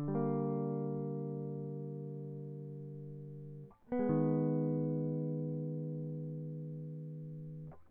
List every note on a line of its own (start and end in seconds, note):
0.00 3.68 D3
0.08 3.73 G3
0.15 3.64 A#3
3.92 7.72 B3
4.00 7.78 G#3
4.10 7.76 D#3